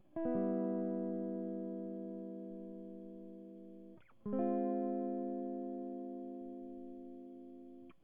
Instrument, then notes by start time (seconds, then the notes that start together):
electric guitar
0.16 E4
0.25 B3
0.35 G3
4.26 G#3
4.33 C4
4.39 F4